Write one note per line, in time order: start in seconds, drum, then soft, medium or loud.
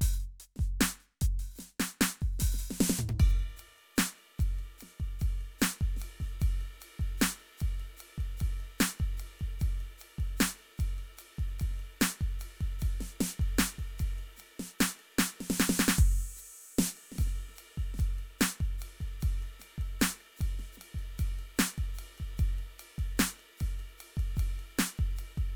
0.01 open hi-hat loud
0.01 kick medium
0.13 hi-hat pedal soft
0.20 closed hi-hat soft
0.40 closed hi-hat medium
0.56 kick medium
0.56 snare soft
0.61 closed hi-hat soft
0.81 closed hi-hat loud
0.81 snare loud
1.00 closed hi-hat soft
1.21 closed hi-hat loud
1.21 kick medium
1.39 open hi-hat soft
1.39 snare soft
1.55 snare soft
1.55 hi-hat pedal medium
1.60 closed hi-hat medium
1.80 closed hi-hat medium
1.80 snare loud
2.01 open hi-hat loud
2.01 snare loud
2.21 kick medium
2.21 open hi-hat soft
2.39 open hi-hat loud
2.39 kick medium
2.39 snare soft
2.54 snare soft
2.59 open hi-hat medium
2.70 snare medium
2.80 snare loud
2.80 hi-hat pedal soft
2.89 snare loud
2.99 floor tom loud
3.04 kick soft
3.09 floor tom medium
3.20 kick loud
3.20 ride bell loud
3.27 hi-hat pedal medium
3.39 ride soft
3.56 hi-hat pedal medium
3.56 ride loud
3.78 ride soft
3.96 snare loud
3.96 hi-hat pedal medium
4.00 ride loud
4.18 ride soft
4.38 kick medium
4.38 hi-hat pedal medium
4.38 ride medium
4.58 ride soft
4.78 hi-hat pedal medium
4.78 ride medium
4.82 snare soft
5.00 kick soft
5.00 ride soft
5.19 kick medium
5.19 hi-hat pedal medium
5.19 ride loud
5.41 ride soft
5.58 snare loud
5.58 hi-hat pedal medium
5.58 ride loud
5.80 kick medium
5.80 ride soft
5.96 snare soft
5.96 hi-hat pedal medium
6.02 ride loud
6.20 kick soft
6.20 snare soft
6.20 ride medium
6.40 kick medium
6.40 hi-hat pedal medium
6.40 ride loud
6.61 ride soft
6.80 hi-hat pedal medium
6.80 ride loud
6.99 kick medium
6.99 ride medium
7.17 hi-hat pedal medium
7.21 snare loud
7.21 ride loud
7.40 ride soft
7.57 hi-hat pedal medium
7.57 ride loud
7.62 kick medium
7.80 ride medium
7.97 hi-hat pedal medium
7.97 ride loud
8.18 kick soft
8.18 ride medium
8.37 hi-hat pedal medium
8.37 ride loud
8.41 kick medium
8.60 ride soft
8.78 snare loud
8.78 hi-hat pedal medium
8.78 ride loud
8.99 kick medium
8.99 ride soft
9.10 kick soft
9.17 hi-hat pedal medium
9.17 ride loud
9.39 kick soft
9.39 ride soft
9.59 kick medium
9.59 hi-hat pedal medium
9.59 ride loud
9.80 ride soft
9.98 hi-hat pedal medium
9.98 ride loud
10.18 kick medium
10.18 ride medium
10.37 snare loud
10.37 hi-hat pedal medium
10.37 ride loud
10.59 ride soft
10.77 kick medium
10.77 hi-hat pedal medium
10.77 ride loud
10.98 ride medium
11.17 hi-hat pedal medium
11.17 ride loud
11.38 kick medium
11.38 ride medium
11.58 kick medium
11.58 hi-hat pedal medium
11.58 ride loud
11.70 snare soft
11.79 ride soft
12.00 snare loud
12.00 hi-hat pedal medium
12.00 ride loud
12.21 kick medium
12.21 ride soft
12.39 hi-hat pedal medium
12.39 ride loud
12.61 kick medium
12.61 ride medium
12.79 kick medium
12.79 hi-hat pedal medium
12.79 ride loud
13.00 snare soft
13.00 ride medium
13.20 snare loud
13.20 hi-hat pedal medium
13.20 ride loud
13.39 kick medium
13.39 ride medium
13.57 snare loud
13.57 hi-hat pedal medium
13.57 ride loud
13.78 kick soft
13.78 ride medium
13.98 kick medium
13.98 hi-hat pedal medium
13.98 ride loud
14.18 ride soft
14.36 snare soft
14.36 hi-hat pedal medium
14.36 ride loud
14.59 snare medium
14.59 ride medium
14.79 snare loud
14.79 hi-hat pedal medium
14.79 ride loud
14.99 ride medium
15.18 snare loud
15.18 hi-hat pedal medium
15.18 ride loud
15.40 snare medium
15.50 snare loud
15.59 snare loud
15.59 hi-hat pedal medium
15.69 snare loud
15.79 snare loud
15.88 snare loud
15.97 kick medium
15.97 hi-hat pedal medium
15.97 crash loud
16.36 hi-hat pedal medium
16.78 snare loud
16.78 hi-hat pedal medium
16.78 ride loud
16.97 ride medium
17.12 snare soft
17.15 kick medium
17.15 snare soft
17.15 ride loud
17.19 snare soft
17.19 hi-hat pedal medium
17.21 snare soft
17.27 snare soft
17.36 ride soft
17.48 snare soft
17.55 hi-hat pedal medium
17.55 ride loud
17.77 kick medium
17.77 ride soft
17.94 snare soft
17.94 hi-hat pedal medium
17.99 kick medium
17.99 ride loud
18.18 ride soft
18.38 snare loud
18.38 hi-hat pedal medium
18.38 ride loud
18.60 kick medium
18.60 ride soft
18.78 hi-hat pedal medium
18.78 ride loud
19.00 kick soft
19.00 ride soft
19.20 kick medium
19.20 hi-hat pedal medium
19.20 ride loud
19.42 ride soft
19.59 snare soft
19.59 hi-hat pedal medium
19.59 ride loud
19.78 kick soft
19.78 ride medium
19.99 snare loud
19.99 hi-hat pedal medium
19.99 ride loud
20.21 ride soft
20.36 snare soft
20.36 hi-hat pedal medium
20.41 kick medium
20.41 ride loud
20.59 snare soft
20.59 ride medium
20.72 hi-hat pedal medium
20.77 snare soft
20.81 ride loud
20.94 kick soft
20.99 ride medium
21.18 kick medium
21.18 hi-hat pedal medium
21.18 ride loud
21.39 ride medium
21.56 snare loud
21.56 hi-hat pedal medium
21.56 ride loud
21.78 kick medium
21.78 ride medium
21.94 hi-hat pedal medium
21.99 ride loud
22.18 kick soft
22.18 ride medium
22.37 kick medium
22.37 hi-hat pedal medium
22.37 ride loud
22.58 ride medium
22.78 hi-hat pedal medium
22.78 ride loud
22.98 kick medium
22.98 ride medium
23.17 snare loud
23.17 hi-hat pedal medium
23.17 ride loud
23.39 ride medium
23.57 kick medium
23.57 hi-hat pedal medium
23.57 ride loud
23.61 snare soft
23.79 ride soft
23.98 hi-hat pedal medium
23.98 ride loud
24.17 kick medium
24.17 ride medium
24.36 kick medium
24.36 hi-hat pedal medium
24.36 ride loud
24.59 ride medium
24.77 snare loud
24.77 hi-hat pedal medium
24.77 ride loud
24.98 kick medium
24.98 ride medium
25.16 hi-hat pedal medium
25.16 ride loud
25.37 kick medium
25.37 ride medium